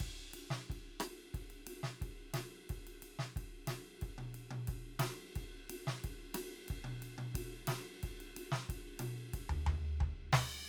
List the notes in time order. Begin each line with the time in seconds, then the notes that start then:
0.01 kick, ride
0.34 ride
0.51 snare
0.71 kick, ride
1.01 cross-stick, ride
1.35 kick, ride
1.51 ride
1.67 ride
1.84 snare
2.02 kick, ride
2.34 snare, ride
2.70 kick, ride
2.88 ride
3.03 ride
3.20 snare
3.37 kick, ride
3.68 snare, ride
4.02 kick, ride
4.19 high tom
4.35 ride
4.51 high tom
4.68 kick, ride
5.00 snare, ride
5.36 kick, ride
5.70 ride
5.88 snare
6.05 kick, ride
6.35 cross-stick, ride
6.69 kick, ride
6.85 high tom
7.03 ride
7.19 closed hi-hat, high tom
7.35 kick, ride
7.68 snare, ride
8.04 kick, ride
8.21 ride
8.37 ride
8.52 snare
8.70 kick, ride
9.00 high tom, ride
9.34 kick, ride
9.50 floor tom
9.67 floor tom
10.01 kick, floor tom
10.33 snare, crash